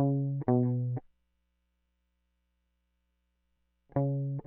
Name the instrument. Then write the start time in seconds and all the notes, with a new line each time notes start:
electric guitar
0.00 C#3
0.50 B2
3.98 C#3